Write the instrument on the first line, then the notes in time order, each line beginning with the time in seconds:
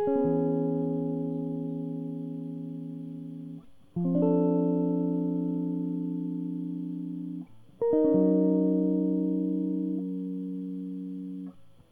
electric guitar
0.00 G#4
0.08 C#4
0.16 E3 B3
3.97 F3
4.05 C4
4.15 D4
4.23 A4
7.82 A#4
7.93 D#4
8.05 C#4
8.15 F#3